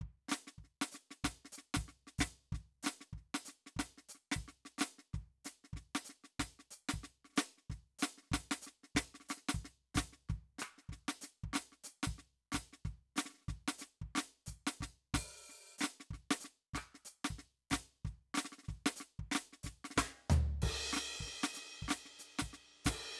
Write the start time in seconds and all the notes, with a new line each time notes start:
0.00 kick
0.28 snare, hi-hat pedal
0.31 snare
0.47 snare
0.58 kick
0.64 snare
0.81 snare
0.92 snare, hi-hat pedal
1.10 snare
1.24 kick, snare
1.45 snare
1.52 hi-hat pedal
1.58 snare
1.74 kick, snare
1.88 snare
2.07 snare
2.18 kick, snare, hi-hat pedal
2.52 kick, snare
2.83 snare, hi-hat pedal
2.86 snare
3.01 snare
3.13 kick
3.17 snare
3.34 snare
3.45 snare, hi-hat pedal
3.66 snare
3.76 kick, snare
3.97 snare
4.09 hi-hat pedal
4.15 snare
4.31 snare
4.36 kick
4.48 snare
4.65 snare
4.78 snare, hi-hat pedal
4.81 snare
4.98 snare
5.13 kick, snare
5.44 snare, hi-hat pedal
5.64 snare
5.73 kick, snare
5.95 snare
6.04 hi-hat pedal
6.09 snare
6.24 snare
6.39 kick, snare
6.59 snare
6.70 snare, hi-hat pedal
6.89 snare
6.94 kick
7.03 snare
7.24 snare
7.29 snare
7.33 snare
7.35 snare, hi-hat pedal
7.37 snare
7.58 snare
7.70 kick, snare
7.99 snare, hi-hat pedal
8.17 snare
8.23 snare
8.26 snare
8.31 kick, snare
8.51 snare
8.62 hi-hat pedal
8.66 snare
8.83 snare
8.95 kick, snare
9.14 snare
9.20 snare
9.28 snare, hi-hat pedal
9.37 snare
9.49 snare
9.54 kick
9.64 snare
9.94 kick, snare, hi-hat pedal
9.97 snare
10.12 snare
10.29 kick, snare
10.58 cross-stick, snare, hi-hat pedal
10.78 snare
10.89 kick, snare
11.08 snare
11.21 snare, hi-hat pedal
11.43 kick
11.53 snare
11.55 snare
11.72 snare
11.84 snare, hi-hat pedal
12.03 snare
12.07 kick
12.18 snare
12.52 kick, snare, hi-hat pedal
12.54 snare
12.73 snare
12.85 kick, snare
13.16 snare, hi-hat pedal
13.18 snare
13.25 snare
13.29 snare
13.34 snare
13.37 snare
13.41 snare
13.48 kick, snare
13.68 snare
13.78 snare, hi-hat pedal
14.01 kick
14.15 snare
14.17 snare
14.46 kick, hi-hat pedal
14.51 snare
14.67 snare
14.80 kick, snare
15.14 open hi-hat, kick, snare
15.49 snare
15.78 snare, hi-hat pedal
15.83 snare
16.00 snare
16.10 kick, snare
16.31 snare
16.40 hi-hat pedal
16.44 snare
16.73 kick, snare
16.77 cross-stick
16.94 snare
17.05 snare, hi-hat pedal
17.24 snare
17.30 kick
17.38 snare
17.70 kick, snare, hi-hat pedal
17.73 snare
18.05 kick, snare
18.34 snare, hi-hat pedal
18.37 snare
18.44 snare
18.52 snare
18.58 snare
18.63 snare
18.68 kick, snare
18.86 snare
18.96 hi-hat pedal
19.00 snare
19.19 kick
19.31 snare
19.35 snare
19.53 snare
19.63 kick, snare, hi-hat pedal
19.84 snare
19.90 snare
19.96 kick, snare
19.98 snare
20.30 floor tom, hi-hat pedal
20.62 kick, ride
20.92 snare, hi-hat pedal
20.96 snare
21.15 snare
21.20 kick
21.27 snare
21.43 snare
21.54 snare, hi-hat pedal
21.82 kick
21.88 snare
21.90 snare
22.05 snare
22.19 snare, hi-hat pedal
22.39 kick, snare
22.53 snare
22.85 kick, snare, hi-hat pedal, ride